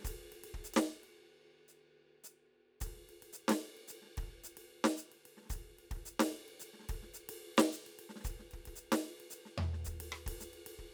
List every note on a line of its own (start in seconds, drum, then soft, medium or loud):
0.01 kick soft
0.01 snare soft
0.01 hi-hat pedal medium
0.07 ride medium
0.32 ride soft
0.44 ride medium
0.54 kick soft
0.64 hi-hat pedal medium
0.74 snare loud
0.74 ride bell medium
1.03 ride soft
1.68 hi-hat pedal soft
2.24 hi-hat pedal medium
2.80 kick soft
2.80 hi-hat pedal medium
2.80 ride medium
2.96 snare soft
3.09 ride soft
3.22 ride soft
3.33 hi-hat pedal medium
3.48 snare medium
3.48 ride medium
3.51 snare medium
3.77 ride soft
3.88 hi-hat pedal medium
3.88 ride medium
4.02 snare soft
4.05 snare soft
4.17 kick soft
4.17 ride soft
4.27 snare soft
4.44 hi-hat pedal medium
4.44 ride soft
4.57 ride medium
4.84 snare loud
4.84 ride soft
4.97 hi-hat pedal medium
5.12 ride soft
5.25 ride soft
5.37 snare soft
5.42 snare soft
5.45 snare soft
5.49 kick soft
5.49 snare soft
5.49 hi-hat pedal medium
5.54 ride medium
5.79 ride soft
5.91 kick soft
5.91 ride soft
6.05 hi-hat pedal medium
6.19 snare loud
6.19 ride loud
6.48 ride soft
6.60 hi-hat pedal medium
6.60 ride soft
6.73 snare soft
6.79 snare soft
6.83 snare soft
6.89 kick soft
6.89 ride medium
7.02 snare soft
7.14 hi-hat pedal medium
7.14 ride soft
7.29 ride medium
7.57 snare loud
7.57 ride medium
7.72 snare soft
7.72 hi-hat pedal medium
7.86 ride soft
7.99 ride medium
8.09 snare soft
8.16 snare soft
8.20 snare soft
8.24 kick soft
8.24 hi-hat pedal medium
8.24 ride medium
8.39 snare soft
8.51 kick soft
8.51 ride soft
8.65 kick soft
8.65 ride soft
8.76 hi-hat pedal medium
8.92 snare medium
8.92 ride medium
9.20 ride soft
9.30 hi-hat pedal medium
9.30 ride soft
9.45 snare soft
9.58 floor tom loud
9.73 snare soft
9.85 kick soft
9.85 hi-hat pedal medium
9.85 ride soft
10.00 ride medium
10.12 cross-stick medium
10.26 kick soft
10.26 ride medium
10.40 snare soft
10.40 hi-hat pedal medium
10.53 ride soft
10.66 ride medium
10.79 kick soft
10.79 snare soft